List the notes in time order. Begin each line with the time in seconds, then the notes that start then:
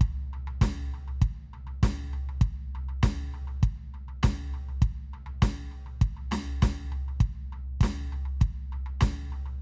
0.01 kick, floor tom
0.33 floor tom
0.47 floor tom
0.61 kick, snare, floor tom
0.94 floor tom
1.08 floor tom
1.22 kick, floor tom
1.53 floor tom
1.67 floor tom
1.83 kick, snare, floor tom
2.13 floor tom
2.29 floor tom
2.41 kick, floor tom
2.75 floor tom
2.89 floor tom
3.03 kick, snare, floor tom
3.34 floor tom
3.47 floor tom
3.63 kick, floor tom
3.94 floor tom
4.08 floor tom
4.23 kick, snare, floor tom
4.54 floor tom
4.69 floor tom
4.82 kick, floor tom
5.13 floor tom
5.26 floor tom
5.42 kick, snare, floor tom
5.71 floor tom
5.86 floor tom
6.02 kick, floor tom
6.17 floor tom
6.31 snare, floor tom
6.62 kick, snare, floor tom
6.92 floor tom
7.08 floor tom
7.21 kick, floor tom
7.53 floor tom
7.81 kick, snare, floor tom
8.12 floor tom
8.26 floor tom
8.41 kick, floor tom
8.72 floor tom
8.86 floor tom
9.01 kick, snare, floor tom
9.32 floor tom
9.46 floor tom